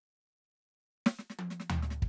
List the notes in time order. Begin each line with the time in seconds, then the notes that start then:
1.06 snare
1.19 snare
1.30 snare
1.39 high tom
1.50 snare, hi-hat pedal
1.60 snare
1.70 floor tom
1.82 snare
1.90 snare
2.02 kick